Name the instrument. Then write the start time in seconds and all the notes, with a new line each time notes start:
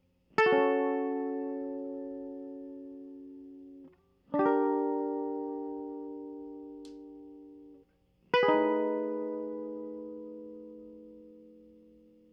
electric guitar
0.39 A4
0.47 F#4
0.53 C#4
4.34 D4
4.40 G4
4.46 A#4
8.34 B4
8.43 G#4
8.49 D#4